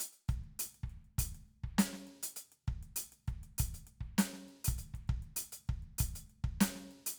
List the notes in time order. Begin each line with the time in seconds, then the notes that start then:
0.00 closed hi-hat
0.12 closed hi-hat
0.28 closed hi-hat, kick
0.44 closed hi-hat
0.59 closed hi-hat
0.74 closed hi-hat
0.83 kick
0.90 closed hi-hat
1.04 closed hi-hat
1.18 closed hi-hat, kick
1.29 kick
1.34 closed hi-hat
1.48 closed hi-hat
1.64 kick
1.78 closed hi-hat, snare
1.93 snare
2.07 closed hi-hat
2.23 closed hi-hat
2.36 closed hi-hat
2.52 closed hi-hat
2.67 kick, closed hi-hat
2.83 closed hi-hat
2.96 closed hi-hat
3.12 closed hi-hat
3.27 kick, closed hi-hat
3.43 closed hi-hat
3.58 closed hi-hat, kick
3.74 closed hi-hat
3.87 closed hi-hat
4.00 kick
4.18 closed hi-hat, snare
4.33 snare
4.48 closed hi-hat
4.64 closed hi-hat, kick
4.78 closed hi-hat
4.94 kick, closed hi-hat
5.08 kick, closed hi-hat
5.22 closed hi-hat
5.36 closed hi-hat
5.52 closed hi-hat
5.68 kick, closed hi-hat
5.82 closed hi-hat
5.98 closed hi-hat, kick
6.15 closed hi-hat
6.29 closed hi-hat
6.44 kick
6.61 closed hi-hat, snare
6.75 snare
6.91 closed hi-hat
7.06 closed hi-hat